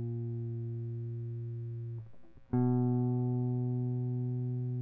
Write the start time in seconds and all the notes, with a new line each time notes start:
2.55 B2